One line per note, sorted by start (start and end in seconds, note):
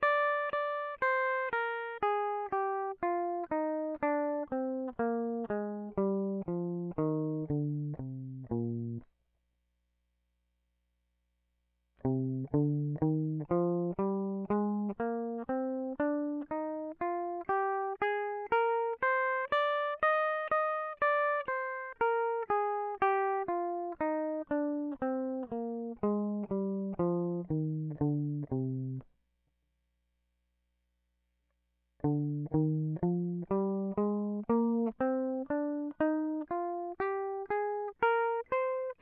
0.03 0.52 D5
0.53 1.00 D5
1.03 1.52 C5
1.53 2.00 A#4
2.03 2.51 G#4
2.53 2.96 G4
3.03 3.48 F4
3.52 3.99 D#4
4.03 4.47 D4
4.53 4.93 C4
5.00 5.49 A#3
5.51 5.94 G#3
5.99 6.46 G3
6.49 6.95 F3
7.00 7.49 D#3
7.51 7.98 D3
8.01 8.52 C3
8.53 9.03 A#2
12.06 12.50 C3
12.55 13.00 D3
13.03 13.47 D#3
13.52 13.96 F3
14.00 14.50 G3
14.51 14.95 G#3
15.01 15.47 A#3
15.50 15.98 C4
16.00 16.46 D4
16.51 16.95 D#4
17.02 17.45 F4
17.50 17.97 G4
18.02 18.49 G#4
18.53 18.97 A#4
19.03 19.49 C5
19.53 20.01 D5
20.03 20.51 D#5
20.52 20.97 D#5
21.02 21.45 D5
21.49 21.96 C5
22.02 22.47 A#4
22.51 22.99 G#4
23.02 23.48 G4
23.49 23.96 F4
24.01 24.45 D#4
24.52 24.98 D4
25.03 25.47 C4
25.52 25.96 A#3
26.04 26.49 G#3
26.52 26.98 G3
27.01 27.46 F3
27.52 27.94 D#3
27.94 28.00 D3
28.02 28.47 D3
28.53 29.03 C3
32.06 32.49 D3
32.55 33.00 D#3
33.04 33.47 F3
33.52 33.96 G3
33.99 34.46 G#3
34.51 34.92 A#3
35.01 35.47 C4
35.51 35.95 D4
36.01 36.46 D#4
36.51 36.97 F4
37.01 37.47 G4
37.51 37.92 G#4
38.03 38.45 A#4
38.53 38.94 C5